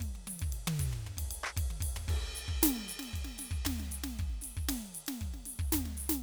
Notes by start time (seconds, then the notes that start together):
0.01 kick, ride
0.15 high tom
0.27 hi-hat pedal, high tom
0.40 kick, ride
0.53 ride
0.68 mid tom
0.80 kick, hi-hat pedal, ride
0.93 floor tom
1.07 floor tom
1.17 kick, ride
1.31 hi-hat pedal, ride
1.44 percussion
1.57 kick, ride
1.71 mid tom
1.81 kick, hi-hat pedal, ride
1.96 floor tom
2.08 kick, ride
2.35 hi-hat pedal, ride
2.48 kick
2.62 snare, ride
2.76 snare
2.89 hi-hat pedal, ride
3.00 snare, ride
3.13 kick, hi-hat pedal, ride
3.25 snare
3.38 snare, hi-hat pedal, ride
3.51 kick
3.64 snare, floor tom, hi-hat pedal
3.80 snare
3.89 kick, hi-hat pedal, ride
4.04 snare
4.15 hi-hat pedal
4.19 kick, ride
4.30 snare
4.42 snare, hi-hat pedal, ride
4.57 kick
4.67 snare, hi-hat pedal, ride
4.95 hi-hat pedal, ride
5.07 snare, ride
5.21 kick, ride
5.34 snare
5.46 snare, hi-hat pedal, ride
5.59 kick
5.70 snare, floor tom, hi-hat pedal
5.86 snare
5.97 hi-hat pedal, ride
6.10 snare